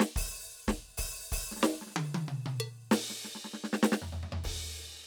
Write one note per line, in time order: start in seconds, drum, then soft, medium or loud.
0.00 snare loud
0.16 open hi-hat loud
0.16 kick medium
0.68 kick medium
0.68 snare loud
0.97 open hi-hat loud
0.97 kick medium
1.32 open hi-hat loud
1.32 kick medium
1.51 snare soft
1.56 snare soft
1.60 snare soft
1.63 snare loud
1.81 snare soft
1.86 snare soft
1.90 snare soft
1.96 high tom loud
2.14 high tom loud
2.28 mid tom medium
2.46 mid tom loud
2.60 percussion loud
2.91 snare loud
2.91 ride loud
3.10 snare soft
3.24 snare soft
3.35 snare soft
3.44 snare soft
3.53 snare soft
3.64 snare medium
3.73 snare medium
3.83 snare loud
3.92 snare loud
4.02 floor tom medium
4.12 floor tom medium
4.23 floor tom medium
4.32 floor tom loud
4.44 kick medium
4.44 ride loud